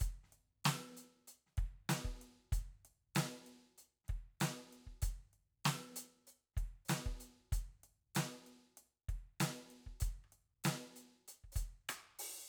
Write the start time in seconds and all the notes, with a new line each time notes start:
0.01 closed hi-hat, kick
0.24 snare
0.28 snare
0.32 snare, closed hi-hat
0.65 closed hi-hat, snare
0.98 closed hi-hat
1.28 closed hi-hat
1.47 snare
1.52 snare
1.58 kick, closed hi-hat
1.67 kick
1.90 closed hi-hat, snare
2.05 kick
2.22 closed hi-hat
2.53 closed hi-hat, kick
2.59 kick
2.62 kick
2.86 closed hi-hat
3.16 closed hi-hat, snare
3.47 closed hi-hat
3.79 closed hi-hat
4.05 snare, closed hi-hat
4.10 kick
4.41 closed hi-hat, snare
4.74 closed hi-hat
4.88 kick
5.03 closed hi-hat, kick
5.13 kick
5.34 closed hi-hat
5.65 closed hi-hat, snare
5.97 open hi-hat
6.28 hi-hat pedal
6.55 kick, snare
6.59 closed hi-hat
6.86 closed hi-hat, hi-hat pedal
6.90 snare
7.07 kick, snare
7.21 closed hi-hat
7.53 closed hi-hat, kick
7.84 closed hi-hat
8.16 closed hi-hat, snare
8.47 closed hi-hat
8.78 closed hi-hat
9.10 kick, closed hi-hat
9.41 closed hi-hat, snare
9.71 closed hi-hat
9.87 kick
10.01 closed hi-hat, kick
10.25 cross-stick
10.33 closed hi-hat
10.65 closed hi-hat, snare
10.97 closed hi-hat
11.29 closed hi-hat
11.45 kick
11.53 closed hi-hat, kick, hi-hat pedal
11.90 closed hi-hat, cross-stick
12.20 open hi-hat